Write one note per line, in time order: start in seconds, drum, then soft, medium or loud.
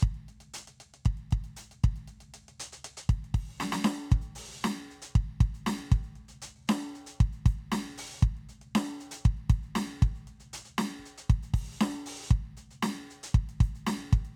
0.01 kick loud
0.01 closed hi-hat soft
0.01 hi-hat pedal soft
0.15 closed hi-hat soft
0.29 closed hi-hat medium
0.41 closed hi-hat medium
0.54 closed hi-hat loud
0.68 closed hi-hat medium
0.80 closed hi-hat medium
0.94 closed hi-hat soft
1.05 kick loud
1.05 closed hi-hat soft
1.17 closed hi-hat soft
1.31 kick medium
1.31 closed hi-hat soft
1.44 closed hi-hat medium
1.57 closed hi-hat loud
1.71 closed hi-hat medium
1.84 kick loud
1.84 closed hi-hat soft
1.96 closed hi-hat medium
2.08 closed hi-hat medium
2.21 closed hi-hat medium
2.34 closed hi-hat medium
2.49 closed hi-hat soft
2.60 closed hi-hat loud
2.73 closed hi-hat medium
2.85 closed hi-hat medium
2.97 closed hi-hat medium
3.10 kick loud
3.10 closed hi-hat medium
3.24 closed hi-hat soft
3.35 open hi-hat medium
3.35 kick medium
3.48 open hi-hat medium
3.58 snare loud
3.58 hi-hat pedal soft
3.73 snare loud
3.85 snare loud
3.98 closed hi-hat soft
4.11 kick loud
4.11 closed hi-hat soft
4.22 closed hi-hat medium
4.36 open hi-hat loud
4.50 open hi-hat soft
4.62 snare loud
4.62 hi-hat pedal soft
4.79 closed hi-hat soft
4.91 closed hi-hat medium
5.02 closed hi-hat loud
5.16 kick loud
5.16 closed hi-hat soft
5.30 closed hi-hat soft
5.41 kick loud
5.41 closed hi-hat medium
5.54 closed hi-hat medium
5.67 snare loud
5.78 closed hi-hat medium
5.92 closed hi-hat medium
5.92 kick loud
6.04 closed hi-hat soft
6.16 closed hi-hat soft
6.29 closed hi-hat medium
6.42 open hi-hat loud
6.56 open hi-hat soft
6.68 snare loud
6.68 hi-hat pedal soft
6.82 closed hi-hat soft
6.95 closed hi-hat medium
7.07 closed hi-hat medium
7.21 kick loud
7.21 closed hi-hat medium
7.33 closed hi-hat soft
7.46 closed hi-hat loud
7.46 kick loud
7.59 closed hi-hat soft
7.72 snare loud
7.85 open hi-hat medium
7.98 open hi-hat loud
8.13 open hi-hat soft
8.20 kick loud
8.20 hi-hat pedal soft
8.25 closed hi-hat soft
8.37 closed hi-hat soft
8.49 closed hi-hat medium
8.62 closed hi-hat soft
8.75 snare loud
8.87 closed hi-hat soft
9.00 closed hi-hat medium
9.11 closed hi-hat loud
9.25 kick loud
9.25 closed hi-hat soft
9.37 closed hi-hat soft
9.50 kick loud
9.50 closed hi-hat medium
9.63 closed hi-hat soft
9.76 snare loud
9.89 closed hi-hat soft
10.03 closed hi-hat medium
10.03 kick loud
10.15 closed hi-hat soft
10.27 closed hi-hat medium
10.40 closed hi-hat medium
10.53 closed hi-hat loud
10.65 closed hi-hat medium
10.78 snare loud
10.93 closed hi-hat soft
10.99 kick soft
11.06 closed hi-hat medium
11.18 closed hi-hat medium
11.30 kick loud
11.30 closed hi-hat medium
11.43 closed hi-hat medium
11.54 open hi-hat loud
11.54 kick medium
11.70 open hi-hat soft
11.79 snare loud
11.79 hi-hat pedal soft
11.94 closed hi-hat soft
12.06 open hi-hat loud
12.20 open hi-hat soft
12.29 kick loud
12.29 hi-hat pedal soft
12.34 closed hi-hat soft
12.46 closed hi-hat soft
12.57 closed hi-hat medium
12.71 closed hi-hat soft
12.83 snare loud
12.97 closed hi-hat soft
13.11 closed hi-hat medium
13.23 closed hi-hat loud
13.35 kick loud
13.35 closed hi-hat soft
13.49 closed hi-hat medium
13.61 closed hi-hat medium
13.61 kick loud
13.75 closed hi-hat medium
13.87 snare loud
14.01 closed hi-hat soft
14.13 closed hi-hat medium
14.13 kick loud
14.25 closed hi-hat medium